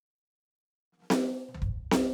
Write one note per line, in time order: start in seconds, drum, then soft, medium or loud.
0.92 snare soft
0.98 snare soft
1.00 snare soft
1.02 snare soft
1.10 snare loud
1.49 high tom soft
1.55 floor tom medium
1.62 kick medium
1.91 snare loud